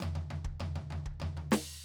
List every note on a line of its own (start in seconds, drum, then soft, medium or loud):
0.00 floor tom loud
0.00 hi-hat pedal soft
0.00 high tom medium
0.15 floor tom medium
0.15 high tom medium
0.30 floor tom medium
0.30 high tom medium
0.44 kick medium
0.60 floor tom medium
0.60 high tom medium
0.75 floor tom medium
0.75 high tom medium
0.90 floor tom medium
0.90 high tom medium
1.06 kick soft
1.20 floor tom medium
1.20 high tom medium
1.37 floor tom soft
1.37 high tom medium
1.51 snare loud
1.51 crash medium